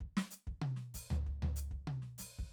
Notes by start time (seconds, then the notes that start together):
0.00 kick
0.17 snare
0.31 snare, hi-hat pedal
0.47 kick
0.62 high tom
0.76 snare
0.94 kick, snare, hi-hat pedal
1.10 floor tom
1.26 kick, snare
1.42 floor tom
1.56 snare, hi-hat pedal
1.71 kick
1.87 high tom
2.02 snare
2.18 kick, snare, hi-hat pedal
2.39 kick